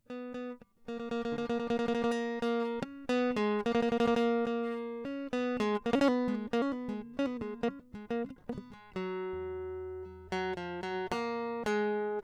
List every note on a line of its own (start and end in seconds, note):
0.12 0.36 B3
0.36 0.59 B3
0.90 1.02 A#3
1.02 1.13 A#3
1.14 1.26 A#3
1.27 1.40 A#3
1.41 1.49 A#3
1.52 1.61 A#3
1.62 1.72 A#3
1.72 1.80 A#3
1.82 1.90 A#3
1.91 2.03 A#3
2.04 2.13 A#3
2.13 2.42 A#3
2.44 2.83 A#3
2.84 3.09 C#4
3.11 3.48 B3
3.38 3.67 G#3
3.68 3.77 A#3
3.77 3.85 A#3
3.85 3.94 A#3
3.94 4.02 A#3
4.02 4.10 A#3
4.10 4.19 A#3
4.19 4.47 A#3
4.47 5.06 A#3
5.07 5.32 C#4
5.35 5.62 B3
5.62 5.82 G#3
5.88 6.00 A#3
6.03 6.15 C#4
6.15 6.29 B3
6.29 6.51 G#3
6.29 6.39 B3
6.55 6.64 A#3
6.64 6.74 C#4
6.74 6.95 B3
6.91 7.06 G#3
6.96 7.18 A#3
7.21 7.28 C#4
7.29 7.38 B3
7.38 7.64 A#3
7.43 7.58 G#3
7.65 7.71 A#3
7.81 7.89 B3
7.91 7.98 B3
7.97 8.10 G#3
8.12 8.28 A#3
8.51 8.77 B3
8.74 8.95 G#3
8.98 10.31 F#3
10.34 10.57 F#3
10.59 10.85 F3
10.85 11.10 F#3
11.13 11.74 A#3
11.68 12.22 G#3